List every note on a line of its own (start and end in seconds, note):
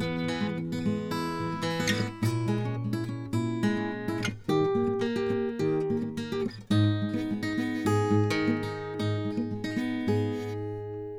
0.00 1.06 E2
0.00 0.65 B3
0.30 0.53 E3
0.43 0.54 A3
0.59 1.32 E3
0.73 1.76 B3
0.73 0.83 B3
0.88 1.53 G#3
1.12 2.00 E2
1.12 2.38 E4
1.42 1.60 E3
1.64 1.89 E3
1.81 2.14 B3
1.89 2.08 D3
2.24 3.28 A#2
2.24 2.59 E4
2.49 2.79 G#3
2.59 2.87 E4
2.67 3.07 C#4
2.86 2.98 G#3
2.94 3.05 E4
3.05 3.29 E4
3.10 3.75 C#4
3.34 4.26 A#2
3.34 3.97 E4
3.64 4.30 G#3
3.79 4.20 C#4
4.47 5.00 A#2
4.47 4.71 D#3
4.47 4.68 D#3
4.47 5.11 G4
4.77 4.98 A#3
5.03 5.83 A#3
5.17 5.54 G4
5.61 6.49 D#3
5.61 5.98 G4
5.92 6.14 A#3
5.99 6.27 G4
6.19 6.50 A#3
6.33 6.50 G4
6.72 7.75 G#2
6.72 7.39 D#4
7.04 7.26 G#3
7.15 7.55 B3
7.32 7.89 G#3
7.44 8.60 D#4
7.60 8.19 B3
7.87 8.06 G#2
7.87 9.99 G#4
8.12 8.97 G#2
8.32 9.22 D#3
8.64 8.97 D#4
9.01 9.97 G#2
9.01 9.31 D#4
9.27 9.47 G#3
9.32 9.59 D#4
9.53 10.09 G#3
9.65 11.20 D#4
9.78 10.02 B3
10.03 10.58 B3
10.09 11.20 G#2
10.09 11.19 G#4